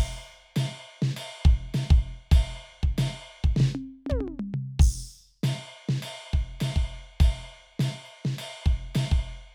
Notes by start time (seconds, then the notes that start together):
0.57 snare, ride bell
1.03 snare
1.17 ride bell
1.46 kick, snare
1.75 snare, ride bell
1.91 kick
2.32 kick, ride
2.84 kick
2.99 snare, ride bell
3.45 kick
3.57 snare
3.61 snare
3.76 high tom
4.07 high tom
4.10 kick, high tom
4.21 high tom
4.29 high tom
4.40 mid tom
4.55 floor tom
4.80 kick, crash
5.44 snare, ride bell
5.90 snare
6.03 ride bell
6.34 kick
6.61 snare, ride bell
6.77 kick
7.21 kick, ride bell
7.80 snare, ride
8.06 ride
8.26 snare
8.39 ride bell
8.67 kick
8.96 snare, ride bell
9.12 kick